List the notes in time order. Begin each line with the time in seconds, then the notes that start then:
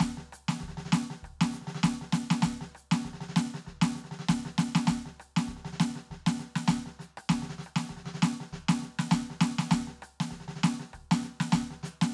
0.01 kick, snare
0.18 snare
0.33 cross-stick, hi-hat pedal
0.49 snare
0.61 kick, snare
0.69 kick, snare
0.78 snare
0.86 snare
0.93 snare, hi-hat pedal
1.11 snare
1.24 kick, cross-stick
1.42 snare
1.54 snare, hi-hat pedal
1.62 snare
1.68 snare
1.76 snare
1.84 kick, snare
2.02 snare
2.14 snare, hi-hat pedal
2.31 snare
2.43 kick, snare
2.62 snare
2.76 cross-stick, hi-hat pedal
2.92 snare
3.06 kick, snare
3.14 snare
3.22 snare
3.30 snare
3.37 snare, hi-hat pedal
3.55 snare
3.68 kick, snare
3.82 snare
3.96 snare, hi-hat pedal
4.05 snare
4.12 snare
4.20 snare
4.30 kick, snare
4.46 snare
4.59 snare, hi-hat pedal
4.76 snare
4.88 kick, snare
5.07 snare
5.21 cross-stick, hi-hat pedal
5.37 snare
5.49 kick, snare
5.58 snare
5.66 snare
5.74 snare
5.81 snare, hi-hat pedal
5.96 snare
6.11 kick, snare
6.27 snare
6.40 snare, hi-hat pedal
6.57 snare
6.69 kick, snare
6.87 snare
7.00 snare, hi-hat pedal
7.18 cross-stick
7.30 kick, snare
7.43 snare
7.50 snare
7.59 snare, hi-hat pedal
7.67 cross-stick
7.77 snare
7.90 kick, snare
7.98 snare
8.05 snare
8.07 snare
8.15 snare
8.23 snare, hi-hat pedal
8.41 snare
8.54 kick, snare
8.69 snare
8.83 snare, hi-hat pedal
9.00 snare
9.12 kick, snare
9.31 snare
9.42 snare, hi-hat pedal
9.59 snare
9.72 kick, snare
9.88 snare
10.03 cross-stick, hi-hat pedal
10.21 snare
10.32 kick, snare
10.41 snare
10.49 snare
10.57 snare
10.64 snare, hi-hat pedal
10.81 snare
10.94 kick, cross-stick
11.12 snare
11.23 snare, hi-hat pedal
11.41 snare
11.53 kick, snare
11.72 snare
11.84 snare, hi-hat pedal
12.02 snare